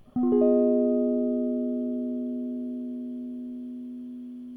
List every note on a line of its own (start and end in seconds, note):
0.17 4.57 B3
0.24 4.29 F4
0.33 3.14 G#4
0.42 2.45 D#5